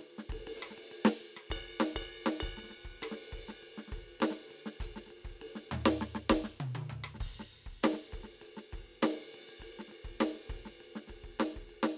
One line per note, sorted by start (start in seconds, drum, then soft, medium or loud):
0.01 ride soft
0.18 snare soft
0.29 kick soft
0.29 ride loud
0.37 kick soft
0.37 snare soft
0.47 ride loud
0.56 hi-hat pedal loud
0.62 cross-stick medium
0.70 snare soft
0.78 ride medium
0.91 ride medium
1.05 snare loud
1.19 hi-hat pedal soft
1.19 ride soft
1.37 cross-stick medium
1.50 kick soft
1.50 hi-hat pedal soft
1.50 ride bell loud
1.57 kick soft
1.65 ride soft
1.80 snare loud
1.96 kick soft
1.96 ride bell loud
2.26 snare medium
2.40 kick medium
2.40 hi-hat pedal soft
2.40 ride bell loud
2.50 kick soft
2.57 snare soft
2.63 snare soft
2.69 snare soft
2.69 ride soft
2.85 kick soft
3.02 cross-stick medium
3.02 hi-hat pedal medium
3.02 ride loud
3.11 snare soft
3.32 kick soft
3.32 ride medium
3.39 kick soft
3.48 snare soft
3.63 ride soft
3.77 snare soft
3.92 kick soft
3.92 ride medium
3.98 kick soft
4.20 snare loud
4.20 hi-hat pedal medium
4.20 ride loud
4.30 snare soft
4.48 hi-hat pedal soft
4.48 ride medium
4.66 snare medium
4.80 kick soft
4.80 hi-hat pedal loud
4.80 ride medium
4.87 kick soft
4.96 snare soft
5.10 ride medium
5.17 snare soft
5.25 kick soft
5.25 snare soft
5.30 kick soft
5.42 ride loud
5.55 snare soft
5.71 floor tom loud
5.86 snare loud
6.01 snare medium
6.15 snare medium
6.30 kick soft
6.30 snare loud
6.30 hi-hat pedal medium
6.44 snare medium
6.60 mid tom loud
6.75 high tom medium
6.90 floor tom medium
7.04 cross-stick medium
7.14 snare soft
7.19 kick medium
7.19 hi-hat pedal soft
7.19 crash medium
7.28 kick soft
7.34 kick soft
7.39 snare soft
7.52 snare soft
7.66 kick soft
7.71 kick soft
7.83 snare loud
7.83 hi-hat pedal medium
7.83 ride loud
7.93 snare soft
8.12 kick soft
8.12 ride medium
8.19 kick soft
8.23 snare soft
8.42 hi-hat pedal medium
8.42 ride medium
8.57 snare soft
8.73 kick soft
8.73 ride medium
8.79 kick soft
9.02 snare loud
9.02 hi-hat pedal soft
9.02 ride loud
9.34 snare soft
9.34 ride medium
9.42 snare soft
9.46 snare soft
9.46 ride medium
9.60 kick soft
9.60 hi-hat pedal soft
9.60 ride medium
9.79 snare soft
9.88 snare soft
9.88 ride medium
10.04 kick soft
10.20 snare loud
10.20 hi-hat pedal medium
10.20 ride loud
10.35 snare soft
10.49 kick soft
10.49 ride medium
10.56 kick soft
10.65 snare soft
10.80 hi-hat pedal soft
10.80 ride medium
10.95 snare soft
11.07 kick soft
11.07 snare soft
11.07 ride medium
11.24 kick soft
11.39 snare loud
11.39 hi-hat pedal medium
11.39 ride medium
11.53 kick soft
11.53 snare soft
11.61 kick soft
11.69 hi-hat pedal soft
11.69 ride soft
11.83 snare loud